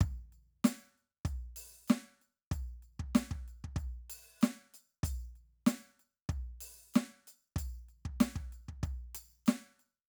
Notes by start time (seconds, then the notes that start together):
0.01 kick, percussion
0.33 percussion
0.64 snare, percussion
0.98 percussion
1.25 kick, percussion
1.56 percussion
1.88 snare, percussion
1.90 percussion
2.22 percussion
2.51 kick, percussion
2.83 percussion
3.00 kick
3.15 snare, percussion
3.31 kick
3.48 percussion
3.64 kick
3.76 kick, percussion
4.10 percussion
4.41 snare, percussion
4.44 percussion
4.74 percussion
5.03 kick, percussion
5.36 percussion
5.67 snare, percussion
6.00 percussion
6.29 kick, percussion
6.61 percussion
6.94 snare, percussion
6.96 percussion
7.27 percussion
7.56 kick, percussion
7.89 percussion
8.05 kick
8.21 snare, percussion
8.36 kick
8.53 percussion
8.69 kick
8.83 kick, percussion
9.15 percussion
9.46 snare, percussion
9.48 percussion
9.80 percussion